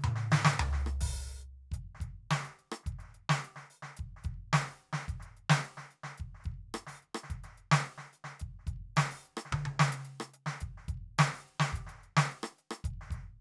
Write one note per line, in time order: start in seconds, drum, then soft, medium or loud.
0.01 hi-hat pedal soft
0.01 mid tom loud
0.16 snare soft
0.31 snare loud
0.31 hi-hat pedal medium
0.45 snare loud
0.60 hi-hat pedal medium
0.60 floor tom loud
0.73 snare soft
0.80 hi-hat pedal soft
0.87 cross-stick medium
1.01 open hi-hat loud
1.01 kick medium
1.72 kick soft
1.72 closed hi-hat medium
1.78 kick soft
1.95 snare soft
2.01 closed hi-hat medium
2.01 kick soft
2.09 kick soft
2.31 closed hi-hat medium
2.31 snare medium
2.43 closed hi-hat medium
2.43 snare soft
2.59 closed hi-hat soft
2.72 cross-stick medium
2.84 closed hi-hat medium
2.84 kick soft
2.84 snare soft
2.92 kick soft
2.99 closed hi-hat soft
2.99 snare soft
3.04 snare soft
3.08 snare soft
3.15 closed hi-hat soft
3.30 snare loud
3.45 closed hi-hat medium
3.56 snare soft
3.70 open hi-hat soft
3.83 snare soft
3.97 closed hi-hat medium
3.97 kick soft
4.17 snare soft
4.23 closed hi-hat medium
4.23 kick soft
4.23 snare soft
4.23 hi-hat pedal soft
4.34 kick soft
4.53 closed hi-hat medium
4.53 snare loud
4.65 open hi-hat soft
4.65 snare soft
4.80 closed hi-hat soft
4.93 snare medium
5.05 closed hi-hat medium
5.05 kick soft
5.05 snare soft
5.14 kick soft
5.20 closed hi-hat medium
5.20 snare soft
5.26 snare soft
5.37 closed hi-hat soft
5.50 snare loud
5.59 snare soft
5.64 closed hi-hat medium
5.78 snare soft
5.91 open hi-hat soft
5.91 hi-hat pedal soft
6.04 snare medium
6.18 closed hi-hat medium
6.18 kick soft
6.35 snare soft
6.40 snare soft
6.40 closed hi-hat soft
6.46 kick soft
6.52 kick soft
6.54 kick soft
6.74 closed hi-hat medium
6.74 cross-stick medium
6.87 open hi-hat medium
6.87 snare soft
6.98 hi-hat pedal soft
7.02 closed hi-hat soft
7.15 cross-stick medium
7.24 snare soft
7.30 closed hi-hat medium
7.30 kick soft
7.35 kick soft
7.44 closed hi-hat medium
7.44 snare soft
7.49 snare soft
7.53 snare soft
7.58 closed hi-hat soft
7.72 snare loud
7.86 closed hi-hat soft
7.98 snare soft
8.13 open hi-hat soft
8.13 hi-hat pedal soft
8.24 snare soft
8.40 closed hi-hat medium
8.40 kick soft
8.59 snare soft
8.63 kick soft
8.63 snare soft
8.68 closed hi-hat medium
8.73 kick soft
8.76 kick soft
8.97 closed hi-hat medium
8.97 snare loud
9.08 open hi-hat medium
9.08 snare soft
9.21 hi-hat pedal soft
9.25 closed hi-hat soft
9.37 cross-stick medium
9.45 snare soft
9.52 kick soft
9.52 snare soft
9.52 high tom loud
9.58 kick soft
9.66 high tom medium
9.80 snare loud
9.88 snare soft
9.92 open hi-hat loud
9.99 snare soft
10.05 closed hi-hat medium
10.20 cross-stick medium
10.34 closed hi-hat medium
10.46 snare medium
10.61 closed hi-hat medium
10.61 kick soft
10.78 snare soft
10.83 snare soft
10.83 hi-hat pedal soft
10.89 closed hi-hat medium
10.89 kick soft
10.94 kick soft
10.98 kick soft
11.19 closed hi-hat loud
11.19 snare loud
11.31 open hi-hat medium
11.31 snare soft
11.42 hi-hat pedal soft
11.48 closed hi-hat soft
11.60 snare loud
11.70 kick soft
11.70 snare soft
11.76 closed hi-hat medium
11.76 kick soft
11.87 closed hi-hat medium
11.87 snare soft
11.92 snare soft
11.98 snare soft
12.04 closed hi-hat soft
12.17 snare loud
12.32 closed hi-hat soft
12.43 cross-stick medium
12.56 closed hi-hat soft
12.56 hi-hat pedal soft
12.71 cross-stick medium
12.84 closed hi-hat medium
12.84 kick soft
12.91 kick soft
12.94 kick soft
13.01 snare soft
13.08 kick soft
13.08 snare soft
13.11 closed hi-hat medium
13.11 snare soft
13.14 snare soft
13.20 kick soft